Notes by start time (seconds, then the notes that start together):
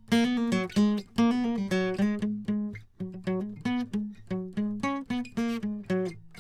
0.13 A#3
0.26 B3
0.39 A#3
0.54 F#3
0.78 G#3
1.20 A#3
1.33 B3
1.46 A#3
1.58 G3
1.73 F#3
2.01 G#3
2.24 G#3
2.50 G#3
3.02 F#3
3.16 F#3
3.29 F#3
3.43 G#3
3.67 B3
3.95 G#3
4.33 F#3
4.59 G#3
4.85 C#4
5.12 B3
5.39 A#3
5.65 G#3
5.92 F#3
6.08 E3